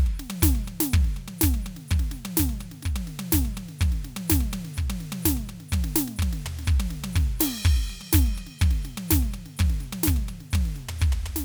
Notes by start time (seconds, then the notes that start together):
0.07 high tom
0.15 hi-hat pedal
0.20 snare
0.30 high tom
0.41 kick, snare, hi-hat pedal
0.56 high tom
0.65 hi-hat pedal, high tom
0.81 snare
0.90 hi-hat pedal
0.94 kick, high tom
1.05 snare
1.14 hi-hat pedal, high tom
1.28 high tom
1.39 snare, hi-hat pedal
1.44 kick
1.54 high tom
1.62 hi-hat pedal
1.67 high tom
1.77 snare
1.89 kick, hi-hat pedal, high tom
2.00 snare
2.12 snare, hi-hat pedal
2.25 high tom
2.37 kick, snare, hi-hat pedal
2.50 high tom
2.60 hi-hat pedal, high tom
2.72 snare
2.83 kick, snare, hi-hat pedal
2.96 high tom
3.06 snare, hi-hat pedal
3.20 high tom
3.32 kick, snare, hi-hat pedal
3.45 high tom
3.54 hi-hat pedal, high tom
3.69 snare
3.79 kick, hi-hat pedal, high tom
3.93 snare
4.03 snare, hi-hat pedal
4.17 high tom
4.28 kick, snare, hi-hat pedal
4.41 high tom
4.51 hi-hat pedal, high tom
4.65 snare
4.74 snare, hi-hat pedal
4.78 kick
4.90 high tom
4.98 snare, hi-hat pedal
5.13 high tom
5.23 kick, snare, hi-hat pedal
5.37 high tom
5.46 hi-hat pedal, high tom
5.61 snare
5.69 kick, hi-hat pedal
5.74 high tom
5.84 snare
5.92 snare, hi-hat pedal
6.08 snare
6.17 kick, hi-hat pedal
6.23 high tom
6.33 snare
6.40 hi-hat pedal
6.46 floor tom
6.59 snare
6.65 kick, snare, hi-hat pedal
6.80 high tom
6.88 snare, hi-hat pedal
7.04 high tom
7.13 kick, snare, hi-hat pedal
7.37 hi-hat pedal, crash
7.41 snare
7.63 kick, hi-hat pedal
7.68 high tom
7.77 snare
7.85 hi-hat pedal
7.90 high tom
8.01 high tom
8.12 kick, snare, hi-hat pedal
8.27 high tom
8.35 hi-hat pedal, high tom
8.47 snare
8.59 kick, hi-hat pedal, high tom
8.71 snare
8.83 snare, hi-hat pedal
8.98 high tom
9.09 kick, snare, hi-hat pedal
9.23 high tom
9.32 hi-hat pedal, high tom
9.46 snare
9.57 kick, hi-hat pedal, high tom
9.70 snare
9.81 snare, hi-hat pedal
9.93 high tom
10.04 snare, hi-hat pedal
10.08 kick
10.17 high tom
10.28 hi-hat pedal, high tom
10.41 snare
10.51 kick, hi-hat pedal
10.55 high tom
10.66 snare
10.74 snare, hi-hat pedal
10.89 floor tom
10.99 kick, snare, hi-hat pedal
11.13 floor tom
11.21 hi-hat pedal
11.26 floor tom
11.37 snare